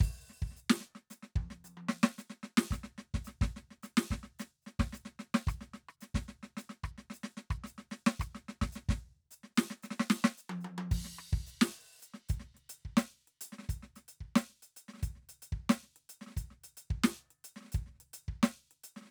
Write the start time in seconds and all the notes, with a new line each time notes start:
0.01 open hi-hat, kick
0.30 snare
0.42 kick
0.51 snare
0.55 snare, hi-hat pedal
0.70 snare
0.81 snare
0.96 snare
1.11 snare, hi-hat pedal
1.23 snare
1.36 kick, high tom
1.51 snare
1.65 hi-hat pedal, high tom
1.78 high tom
1.89 snare
2.04 snare
2.19 snare, hi-hat pedal
2.30 snare
2.44 snare
2.58 snare
2.71 kick, snare, hi-hat pedal
2.84 snare
2.99 snare
3.15 kick, snare
3.25 snare, hi-hat pedal
3.42 kick, snare
3.57 snare
3.71 snare
3.83 snare, hi-hat pedal
3.98 snare
4.11 kick, snare
4.24 snare
4.40 snare, hi-hat pedal
4.62 hi-hat pedal
4.67 snare
4.80 kick, snare
4.93 snare, hi-hat pedal
5.06 snare
5.20 snare
5.35 snare
5.47 kick, cross-stick, hi-hat pedal
5.61 snare
5.74 snare
5.89 cross-stick
6.01 snare, hi-hat pedal
6.15 kick, snare
6.29 snare
6.43 snare
6.57 snare, hi-hat pedal
6.70 snare
6.84 kick, cross-stick
6.98 snare
7.11 snare, hi-hat pedal
7.24 snare
7.37 snare
7.51 kick, cross-stick
7.64 snare, hi-hat pedal
7.79 snare
7.91 snare, hi-hat pedal
8.07 snare
8.20 kick, cross-stick, hi-hat pedal
8.35 snare
8.49 snare
8.62 kick, snare
8.73 snare, hi-hat pedal
8.89 kick, snare
9.31 hi-hat pedal
9.44 snare
9.51 snare
9.56 snare, hi-hat pedal
9.71 snare
9.83 snare, hi-hat pedal
9.91 snare
10.00 snare
10.10 snare
10.25 snare
10.38 hi-hat pedal
10.50 high tom
10.61 hi-hat pedal, high tom
10.79 high tom
10.92 kick, hi-hat pedal, crash
11.05 snare
11.19 cross-stick
11.33 kick, closed hi-hat
11.47 hi-hat pedal
11.62 open hi-hat, snare
11.89 open hi-hat
12.00 closed hi-hat, hi-hat pedal
12.14 snare
12.29 closed hi-hat, kick
12.40 snare
12.55 snare, closed hi-hat
12.70 closed hi-hat
12.85 kick
12.97 closed hi-hat, snare
13.28 closed hi-hat
13.41 closed hi-hat
13.53 snare
13.59 snare
13.70 closed hi-hat, kick
13.83 snare
13.96 closed hi-hat, snare
14.09 closed hi-hat
14.21 kick
14.36 closed hi-hat, snare
14.50 snare
14.63 closed hi-hat
14.77 closed hi-hat
14.89 snare
14.94 snare
14.98 snare
15.02 closed hi-hat, kick, snare
15.16 snare
15.22 snare
15.29 closed hi-hat
15.43 closed hi-hat
15.53 kick
15.70 closed hi-hat, snare
15.84 snare
15.96 closed hi-hat
16.10 closed hi-hat
16.22 snare
16.27 snare
16.31 snare
16.37 closed hi-hat, kick
16.51 snare
16.64 closed hi-hat
16.77 closed hi-hat
16.91 kick
17.04 closed hi-hat, snare
17.31 closed hi-hat
17.45 closed hi-hat
17.57 snare
17.61 snare
17.65 snare
17.68 snare
17.72 closed hi-hat, kick
17.87 snare
17.91 snare
17.95 snare
18.01 closed hi-hat
18.14 closed hi-hat
18.29 kick
18.44 closed hi-hat, snare
18.71 closed hi-hat
18.84 closed hi-hat
18.97 snare
19.02 snare
19.06 snare